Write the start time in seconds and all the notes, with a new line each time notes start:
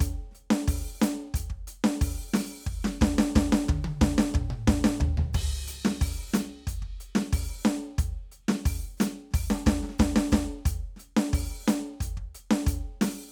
0.01 closed hi-hat, kick
0.32 closed hi-hat, snare
0.51 snare
0.68 open hi-hat, kick
1.00 closed hi-hat, snare, hi-hat pedal
1.34 closed hi-hat, kick
1.50 kick
1.68 closed hi-hat
1.84 snare
2.02 open hi-hat, kick
2.34 open hi-hat, snare
2.67 kick
2.85 snare
3.02 kick, snare
3.19 snare
3.36 kick, snare
3.53 snare
3.69 kick, high tom
3.85 high tom
4.02 kick, snare
4.19 snare
4.34 kick, mid tom
4.51 mid tom
4.68 kick, snare
4.85 snare
5.01 kick, floor tom
5.18 floor tom
5.33 kick, hi-hat pedal, crash
5.35 kick
5.65 closed hi-hat, hi-hat pedal
5.85 snare
6.02 open hi-hat, kick
6.34 closed hi-hat, snare, hi-hat pedal
6.68 closed hi-hat, kick
6.83 kick
7.01 closed hi-hat
7.16 snare
7.33 open hi-hat, kick
7.65 snare, hi-hat pedal
7.99 closed hi-hat, kick
8.32 closed hi-hat
8.49 snare
8.66 open hi-hat, kick
8.98 closed hi-hat, snare, hi-hat pedal
9.31 open hi-hat, kick, snare
9.51 snare
9.67 kick, snare, hi-hat pedal
9.83 snare
9.90 snare
9.93 snare
9.99 kick, snare, hi-hat pedal
10.16 snare
10.31 kick, snare, hi-hat pedal
10.66 closed hi-hat, kick
10.97 closed hi-hat, snare
11.17 snare
11.34 open hi-hat, kick
11.67 closed hi-hat, snare, hi-hat pedal
12.01 closed hi-hat, kick
12.18 kick
12.35 closed hi-hat
12.51 snare
12.67 closed hi-hat, kick
13.02 open hi-hat, snare